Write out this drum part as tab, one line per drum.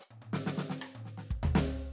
HH |p---------------|
SD |---oooor-oo--o--|
T1 |-oo-----o-------|
FT |------------o---|
BD |-----------o----|